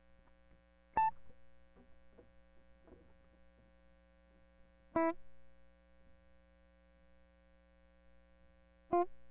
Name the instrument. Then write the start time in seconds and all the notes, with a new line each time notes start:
electric guitar
0.98 A5
4.97 E4
8.93 F4